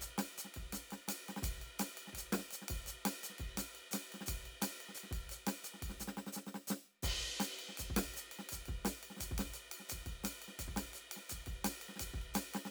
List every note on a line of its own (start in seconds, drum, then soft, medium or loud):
0.01 hi-hat pedal medium
0.01 ride medium
0.18 snare medium
0.18 ride loud
0.38 hi-hat pedal medium
0.38 ride medium
0.44 snare soft
0.54 kick soft
0.54 ride medium
0.72 snare soft
0.72 hi-hat pedal medium
0.72 ride medium
0.91 snare soft
0.91 ride medium
1.08 snare soft
1.08 hi-hat pedal medium
1.08 ride loud
1.28 snare soft
1.28 ride medium
1.36 snare soft
1.42 kick medium
1.42 hi-hat pedal medium
1.42 ride loud
1.62 ride medium
1.79 snare medium
1.79 hi-hat pedal medium
1.79 ride loud
1.97 ride medium
2.07 snare soft
2.13 kick soft
2.13 ride medium
2.17 hi-hat pedal medium
2.32 snare medium
2.32 ride loud
2.39 snare soft
2.51 hi-hat pedal medium
2.51 ride medium
2.62 snare soft
2.68 kick soft
2.68 ride loud
2.86 hi-hat pedal medium
2.86 ride medium
3.05 snare medium
3.05 ride loud
3.23 hi-hat pedal medium
3.23 ride medium
3.30 snare soft
3.38 kick soft
3.38 ride medium
3.57 snare medium
3.57 hi-hat pedal medium
3.57 ride loud
3.75 ride medium
3.91 snare medium
3.91 hi-hat pedal medium
3.91 ride loud
4.12 snare soft
4.12 ride medium
4.21 snare soft
4.26 kick soft
4.26 hi-hat pedal medium
4.26 ride loud
4.45 ride soft
4.62 snare medium
4.62 hi-hat pedal medium
4.62 ride loud
4.80 ride medium
4.89 snare soft
4.95 hi-hat pedal medium
4.95 ride medium
5.03 snare soft
5.11 kick medium
5.11 ride medium
5.29 hi-hat pedal medium
5.29 ride medium
5.47 snare medium
5.47 ride loud
5.64 hi-hat pedal medium
5.64 ride medium
5.74 snare soft
5.82 kick soft
5.82 ride medium
5.89 snare soft
6.00 snare soft
6.00 hi-hat pedal medium
6.07 snare soft
6.17 snare soft
6.26 snare soft
6.33 snare soft
6.33 hi-hat pedal medium
6.47 snare soft
6.54 snare soft
6.67 snare medium
6.67 hi-hat pedal medium
7.02 kick medium
7.02 hi-hat pedal medium
7.02 ride loud
7.40 snare medium
7.40 hi-hat pedal medium
7.40 ride loud
7.59 ride medium
7.69 snare soft
7.77 kick soft
7.77 hi-hat pedal medium
7.77 ride medium
7.90 kick soft
7.96 snare medium
7.96 ride loud
8.14 hi-hat pedal medium
8.14 ride medium
8.31 ride medium
8.39 snare soft
8.49 kick soft
8.49 hi-hat pedal medium
8.49 ride medium
8.66 kick medium
8.66 ride medium
8.85 snare medium
8.85 hi-hat pedal medium
8.85 ride loud
9.03 ride medium
9.10 snare soft
9.17 kick soft
9.17 snare soft
9.17 hi-hat pedal medium
9.21 ride medium
9.31 kick medium
9.38 snare medium
9.38 ride loud
9.53 hi-hat pedal medium
9.53 ride medium
9.71 ride medium
9.80 snare soft
9.89 kick soft
9.89 hi-hat pedal medium
9.89 ride medium
10.06 kick soft
10.06 ride medium
10.24 snare medium
10.24 hi-hat pedal medium
10.24 ride loud
10.42 ride medium
10.48 snare soft
10.59 kick soft
10.59 hi-hat pedal medium
10.59 ride medium
10.68 kick soft
10.76 snare medium
10.76 ride loud
10.93 hi-hat pedal medium
10.93 ride medium
11.11 ride medium
11.16 snare soft
11.29 kick soft
11.29 hi-hat pedal medium
11.29 ride medium
11.46 kick soft
11.46 ride medium
11.64 snare medium
11.64 hi-hat pedal medium
11.64 ride loud
11.81 ride medium
11.89 snare soft
11.96 snare soft
11.96 ride loud
12.00 kick soft
12.00 hi-hat pedal medium
12.14 kick soft
12.22 ride soft
12.34 snare medium
12.34 hi-hat pedal medium
12.34 ride loud
12.54 snare medium
12.54 ride medium
12.65 snare soft